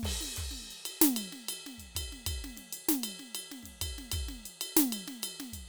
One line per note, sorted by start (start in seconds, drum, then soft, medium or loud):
0.01 kick soft
0.01 hi-hat pedal soft
0.05 crash medium
0.10 kick soft
0.21 snare soft
0.37 kick soft
0.37 percussion soft
0.37 ride medium
0.46 kick soft
0.52 snare soft
0.63 snare soft
0.71 ride bell soft
0.86 ride bell loud
1.02 snare loud
1.17 ride bell loud
1.33 snare soft
1.49 hi-hat pedal loud
1.49 ride bell loud
1.67 snare soft
1.79 kick soft
1.79 ride bell soft
1.83 snare soft
1.96 kick soft
1.96 ride bell loud
2.01 kick soft
2.13 snare soft
2.27 kick soft
2.27 ride bell loud
2.33 kick soft
2.45 snare soft
2.57 snare soft
2.57 ride medium
2.73 ride bell medium
2.89 snare medium
3.04 ride bell loud
3.20 snare soft
3.35 hi-hat pedal medium
3.35 ride bell loud
3.52 snare soft
3.63 kick soft
3.63 snare soft
3.63 ride medium
3.82 kick soft
3.82 ride bell loud
3.99 snare soft
4.12 kick soft
4.12 ride bell loud
4.20 kick soft
4.29 snare soft
4.46 ride bell medium
4.62 ride bell loud
4.77 snare loud
4.93 ride bell loud
5.08 snare medium
5.23 hi-hat pedal medium
5.23 ride bell loud
5.41 snare medium
5.53 kick soft
5.53 ride bell medium